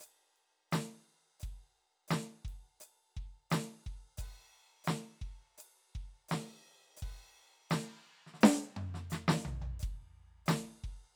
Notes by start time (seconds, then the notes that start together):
0.01 hi-hat pedal, ride
0.36 ride
0.72 snare, hi-hat pedal, ride
1.40 kick, hi-hat pedal, ride
2.08 snare, hi-hat pedal, ride
2.45 kick, ride
2.81 hi-hat pedal, ride
3.16 kick, ride
3.51 snare, hi-hat pedal, ride
3.85 kick, ride
4.18 kick, hi-hat pedal, crash
4.85 snare, hi-hat pedal, ride
5.22 kick, ride
5.58 hi-hat pedal, ride
5.95 kick, ride
6.29 snare, hi-hat pedal, crash
6.65 ride
6.97 hi-hat pedal
7.03 kick, crash
7.36 ride
7.71 snare, hi-hat pedal, ride
8.07 ride
8.27 snare
8.34 snare
8.41 snare, hi-hat pedal
8.44 snare
8.77 mid tom
8.95 snare
9.11 snare, hi-hat pedal
9.29 snare
9.45 floor tom
9.62 floor tom
9.80 kick, hi-hat pedal, ride
10.46 snare, hi-hat pedal, ride
10.84 kick, ride